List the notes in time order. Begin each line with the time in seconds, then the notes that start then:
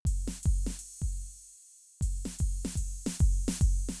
0.05 kick, crash
0.28 snare
0.43 kick, crash
0.66 snare
0.70 snare
0.79 crash
1.02 kick
2.01 kick, crash
2.25 snare
2.39 kick, crash
2.65 snare
2.76 kick, crash
2.81 kick
3.06 snare
3.19 kick, crash
3.48 snare
3.61 kick, crash
3.89 snare